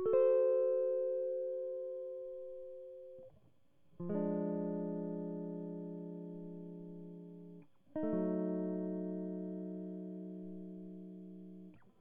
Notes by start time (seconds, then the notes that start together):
0.00 F#4
0.07 A4
0.14 C5
4.01 F3
4.11 G#3
4.15 D4
7.96 D#4
8.04 A3
8.14 F#3